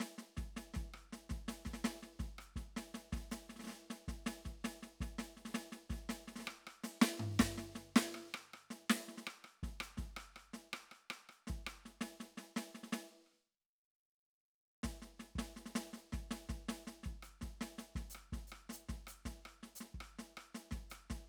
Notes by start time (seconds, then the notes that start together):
0.01 snare
0.18 snare
0.37 kick, snare
0.57 snare, hi-hat pedal
0.74 kick, snare
0.94 cross-stick
1.13 snare
1.29 kick, snare
1.48 snare, hi-hat pedal
1.65 kick, snare
1.74 snare
1.84 snare
2.03 snare
2.19 kick, snare
2.39 cross-stick, hi-hat pedal
2.56 kick, snare
2.77 snare
2.94 snare
3.12 kick, snare
3.16 snare
3.31 snare, hi-hat pedal
3.49 snare
3.56 snare
3.59 snare
3.64 snare
3.67 snare
3.69 snare
3.90 snare
4.08 kick, snare
4.26 snare, hi-hat pedal
4.45 kick, snare
4.64 snare, hi-hat pedal
4.83 snare
5.01 kick, snare
5.19 snare
5.23 hi-hat pedal
5.37 snare
5.45 snare
5.54 snare
5.72 snare, hi-hat pedal
5.90 kick, snare
5.91 snare
6.09 snare, hi-hat pedal
6.28 snare
6.36 snare
6.39 snare
6.41 snare
6.47 cross-stick
6.67 cross-stick
6.84 snare, hi-hat pedal
7.02 snare
7.20 floor tom
7.35 hi-hat pedal
7.39 kick, snare
7.58 snare
7.62 hi-hat pedal
7.75 snare
7.96 snare
8.14 cross-stick
8.34 cross-stick
8.54 cross-stick
8.70 snare, hi-hat pedal
8.90 snare
9.08 snare
9.18 snare
9.27 cross-stick
9.44 cross-stick
9.63 kick, snare
9.80 cross-stick, hi-hat pedal
9.97 kick, snare
10.17 cross-stick
10.36 cross-stick
10.54 snare
10.73 cross-stick
10.91 cross-stick
11.10 cross-stick
11.29 cross-stick, hi-hat pedal
11.47 kick, snare
11.67 cross-stick, hi-hat pedal
11.85 snare
12.01 snare
12.20 snare
12.37 snare
12.56 snare
12.75 snare
12.83 snare
12.93 snare
13.26 cross-stick
13.32 cross-stick, snare
14.83 kick, snare
15.02 snare
15.20 snare
15.36 kick, snare
15.56 snare
15.66 snare
15.75 snare
15.93 snare
15.97 hi-hat pedal
16.12 kick, snare
16.31 snare, hi-hat pedal
16.49 kick, snare
16.69 snare
16.87 snare
17.03 kick, snare
17.23 cross-stick, hi-hat pedal
17.41 kick, snare
17.61 snare
17.78 snare, hi-hat pedal
17.96 kick, snare
18.10 hi-hat pedal
18.15 cross-stick
18.33 kick, snare
18.47 hi-hat pedal
18.52 cross-stick
18.69 snare, hi-hat pedal
18.89 kick, snare
19.07 cross-stick, hi-hat pedal
19.25 kick, snare
19.45 cross-stick
19.63 snare
19.75 hi-hat pedal
19.81 snare
19.94 kick
20.01 cross-stick
20.19 snare
20.37 cross-stick
20.55 snare, hi-hat pedal
20.71 kick, snare
20.90 cross-stick, hi-hat pedal
21.10 kick, snare